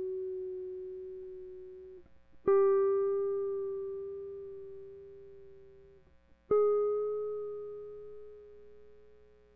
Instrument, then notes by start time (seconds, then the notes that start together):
electric guitar
2.48 G4
6.52 G#4